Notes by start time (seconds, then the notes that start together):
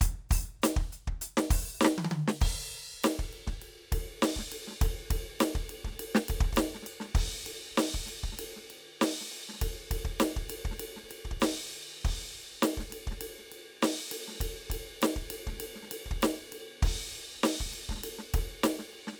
0.01 closed hi-hat, kick
0.29 open hi-hat, kick, hi-hat pedal
0.62 closed hi-hat, snare, hi-hat pedal
0.76 kick
0.92 closed hi-hat
1.07 kick
1.21 closed hi-hat
1.37 snare
1.51 open hi-hat, kick
1.81 snare, hi-hat pedal
1.85 snare
1.98 high tom
2.05 high tom
2.10 hi-hat pedal, high tom
2.28 snare
2.40 kick, hi-hat pedal, crash
2.94 kick
3.02 snare, hi-hat pedal, ride
3.19 kick
3.31 hi-hat pedal, ride
3.47 kick, snare
3.60 hi-hat pedal, ride
3.92 kick, ride
4.22 snare, hi-hat pedal, ride
4.36 kick, snare
4.52 ride
4.67 snare
4.71 snare
4.81 kick, hi-hat pedal, ride
5.10 kick, ride
5.39 snare, hi-hat pedal, ride
5.55 kick
5.68 hi-hat pedal, ride
5.84 kick, snare
5.91 snare
5.94 snare
5.99 hi-hat pedal, ride
6.15 snare
6.24 hi-hat pedal
6.29 kick, ride
6.41 kick
6.53 kick, hi-hat pedal, ride
6.57 snare
6.75 snare
6.83 snare, ride bell
7.00 snare
7.04 snare
7.08 snare
7.15 kick, hi-hat pedal, ride
7.46 ride
7.71 kick
7.78 snare, hi-hat pedal, ride
7.94 kick
8.06 snare, hi-hat pedal, ride
8.23 kick
8.32 snare
8.37 hi-hat pedal, ride
8.56 snare
8.70 ride
9.00 snare, hi-hat pedal, ride
9.21 snare
9.26 snare
9.31 ride
9.49 snare
9.54 snare
9.58 kick, snare, hi-hat pedal, ride
9.91 kick, ride
10.05 kick
10.19 snare, hi-hat pedal, ride
10.36 kick
10.49 hi-hat pedal, ride
10.65 kick
10.71 snare
10.77 hi-hat pedal, ride
10.96 snare
11.03 kick, snare
11.06 snare, hi-hat pedal
11.11 ride
11.25 kick
11.31 kick
11.40 snare, hi-hat pedal, ride
12.05 kick, ride
12.53 kick
12.62 snare, hi-hat pedal, ride
12.77 kick, snare
12.90 snare, hi-hat pedal, ride
13.07 kick, snare
13.21 ride
13.38 snare
13.52 ride
13.80 snare, hi-hat pedal, ride
14.12 ride
14.28 snare
14.30 snare
14.35 snare
14.39 kick, hi-hat pedal, ride
14.70 kick, ride
15.01 snare, hi-hat pedal, ride
15.16 kick
15.30 hi-hat pedal, ride
15.47 kick, snare
15.52 snare
15.55 snare
15.58 snare, hi-hat pedal, ride
15.76 snare
15.83 snare
15.87 snare
15.90 snare, hi-hat pedal, ride
16.06 kick
16.11 kick, ride
16.21 snare, hi-hat pedal, ride
16.52 ride
16.82 kick, ride
17.36 kick
17.43 snare, hi-hat pedal, ride
17.60 kick
17.65 snare
17.71 snare, ride
17.89 kick, snare
17.96 snare
18.00 snare, ride
18.04 snare, hi-hat pedal
18.19 snare
18.34 kick, ride
18.64 snare, hi-hat pedal, ride
18.79 snare
18.88 snare
18.92 snare, ride
19.07 snare
19.12 snare